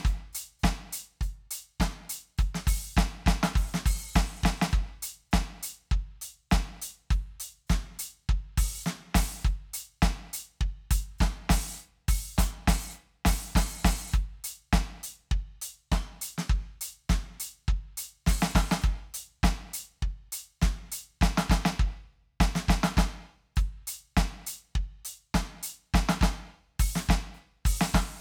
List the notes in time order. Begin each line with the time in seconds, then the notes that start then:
0.01 hi-hat pedal
0.05 closed hi-hat, kick
0.33 closed hi-hat, hi-hat pedal
0.59 hi-hat pedal
0.64 kick, snare
0.93 closed hi-hat
1.21 closed hi-hat, kick
1.51 closed hi-hat
1.80 kick, snare
2.10 closed hi-hat
2.38 closed hi-hat, kick
2.55 snare
2.67 open hi-hat, kick
2.97 kick, snare
3.17 snare
3.26 kick, snare
3.43 snare
3.56 open hi-hat, kick
3.74 snare
3.86 open hi-hat, kick
4.16 kick, snare
4.44 kick, snare
4.62 snare
4.71 kick, hi-hat pedal
5.03 closed hi-hat
5.31 kick, snare, hi-hat pedal
5.63 closed hi-hat
5.91 kick, closed hi-hat
6.22 closed hi-hat
6.51 kick, snare, hi-hat pedal
6.82 closed hi-hat
7.11 kick, closed hi-hat
7.40 closed hi-hat
7.67 kick, snare, hi-hat pedal
7.99 closed hi-hat
8.29 kick, closed hi-hat
8.58 open hi-hat, kick
8.83 snare, hi-hat pedal
8.88 closed hi-hat
9.15 open hi-hat, kick, snare
9.43 closed hi-hat, kick, hi-hat pedal
9.74 closed hi-hat
10.02 kick, snare
10.33 closed hi-hat
10.61 kick
10.91 open hi-hat, kick
11.19 kick, snare, hi-hat pedal
11.50 open hi-hat, kick, snare
11.77 hi-hat pedal
12.08 open hi-hat, kick
12.36 closed hi-hat, kick, snare, hi-hat pedal
12.68 open hi-hat, kick, snare
12.92 hi-hat pedal
13.25 open hi-hat, kick, snare
13.55 open hi-hat, kick, snare
13.85 open hi-hat, kick, snare
14.12 kick, hi-hat pedal
14.44 closed hi-hat
14.73 kick, snare
15.03 closed hi-hat
15.31 kick
15.62 closed hi-hat
15.92 kick, snare
16.22 closed hi-hat
16.38 snare
16.45 hi-hat pedal
16.50 kick
16.81 closed hi-hat
17.10 kick, snare
17.40 closed hi-hat
17.68 kick
17.97 closed hi-hat
18.27 open hi-hat, kick, snare
18.42 snare
18.55 kick, snare
18.71 snare
18.81 kick, hi-hat pedal
19.14 closed hi-hat
19.43 kick, snare
19.74 closed hi-hat
20.02 kick
20.32 closed hi-hat
20.62 kick, snare
20.92 closed hi-hat
21.21 kick, snare
21.38 snare
21.50 kick, snare
21.65 snare
21.80 kick
22.09 kick
22.12 kick
22.40 kick, snare
22.55 snare
22.69 kick, snare
22.83 snare
22.97 kick, snare
23.56 kick, hi-hat pedal
23.87 closed hi-hat
24.17 kick, snare
24.47 closed hi-hat
24.75 kick
25.05 closed hi-hat
25.34 kick, snare
25.63 closed hi-hat
25.94 kick, snare
26.09 snare
26.21 kick, snare
26.79 open hi-hat, kick
26.96 snare
27.09 kick, snare
27.34 hi-hat pedal
27.65 open hi-hat, kick, hi-hat pedal
27.81 snare
27.94 kick, snare